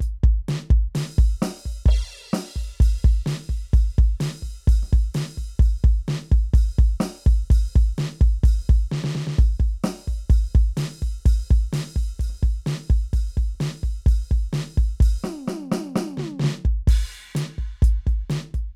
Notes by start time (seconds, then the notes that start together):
0.01 closed hi-hat, kick
0.24 kick
0.49 closed hi-hat, snare
0.63 snare
0.71 kick
0.96 open hi-hat, snare
1.08 snare
1.19 kick
1.43 open hi-hat, snare
1.51 snare
1.66 kick
1.86 kick, crash
2.34 open hi-hat, snare
2.56 kick
2.81 open hi-hat, kick
3.05 kick
3.27 open hi-hat, snare
3.50 kick
3.74 open hi-hat, kick
3.99 kick
4.21 open hi-hat, snare
4.43 kick
4.68 open hi-hat, kick
4.83 snare
4.93 kick
5.15 open hi-hat, snare
5.38 kick
5.60 open hi-hat, kick
5.84 kick
6.08 open hi-hat, snare
6.32 kick
6.54 open hi-hat, kick
6.79 kick
7.01 open hi-hat, snare
7.27 kick
7.51 open hi-hat, kick
7.76 kick
7.98 open hi-hat, snare
8.21 kick
8.44 open hi-hat, kick
8.62 snare
8.70 kick
8.92 snare
9.04 snare
9.16 snare
9.27 snare
9.39 open hi-hat, kick
9.60 kick
9.84 open hi-hat, snare
10.00 snare
10.08 kick
10.30 open hi-hat, kick
10.55 kick
10.78 open hi-hat, snare
11.03 kick
11.26 open hi-hat, kick
11.51 kick
11.73 open hi-hat, snare
11.96 kick
12.20 open hi-hat, kick
12.30 snare
12.43 kick
12.67 open hi-hat, snare
12.90 kick
13.14 open hi-hat, kick
13.38 kick
13.56 kick
13.61 open hi-hat, snare
13.84 kick
14.07 open hi-hat, kick
14.32 kick
14.53 open hi-hat, snare
14.78 kick
15.01 open hi-hat, kick
15.24 kick, snare, floor tom
15.48 snare, floor tom
15.72 snare, floor tom
15.96 snare, floor tom
16.18 snare, floor tom
16.40 snare, hi-hat pedal
16.44 snare
16.65 kick
16.88 open hi-hat, kick, crash
17.31 hi-hat pedal
17.36 closed hi-hat, snare
17.59 kick, closed hi-hat
17.83 closed hi-hat, kick
18.06 kick, snare, closed hi-hat
18.30 closed hi-hat, snare
18.44 snare
18.55 kick, closed hi-hat